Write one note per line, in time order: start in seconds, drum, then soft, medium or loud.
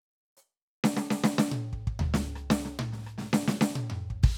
0.37 hi-hat pedal medium
0.84 snare loud
0.97 snare medium
1.10 snare loud
1.24 snare loud
1.38 snare loud
1.52 high tom loud
1.73 kick medium
1.87 kick medium
1.99 floor tom loud
2.14 snare loud
2.24 snare soft
2.36 cross-stick medium
2.50 snare loud
2.65 snare medium
2.79 high tom loud
2.92 snare soft
2.98 snare soft
3.02 snare soft
3.07 cross-stick medium
3.18 snare medium
3.21 snare medium
3.25 snare soft
3.33 snare loud
3.48 snare loud
3.61 snare loud
3.75 high tom loud
3.90 mid tom loud
4.10 kick medium
4.23 kick loud
4.23 crash medium